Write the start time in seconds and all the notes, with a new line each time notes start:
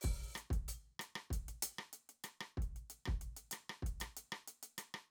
0.01 open hi-hat, kick
0.34 cross-stick, closed hi-hat, hi-hat pedal
0.50 kick, closed hi-hat
0.68 closed hi-hat
0.99 cross-stick, closed hi-hat
1.15 cross-stick
1.30 kick, closed hi-hat
1.48 closed hi-hat
1.62 closed hi-hat
1.78 cross-stick
1.93 closed hi-hat
2.09 closed hi-hat
2.24 cross-stick, closed hi-hat
2.41 cross-stick
2.57 kick
2.62 closed hi-hat
2.76 closed hi-hat
2.90 closed hi-hat
3.06 kick, cross-stick
3.21 closed hi-hat
3.37 closed hi-hat
3.51 cross-stick, closed hi-hat
3.69 cross-stick
3.82 kick, closed hi-hat
4.00 cross-stick, closed hi-hat
4.17 closed hi-hat
4.32 cross-stick
4.48 closed hi-hat
4.63 closed hi-hat
4.78 cross-stick, closed hi-hat
4.94 cross-stick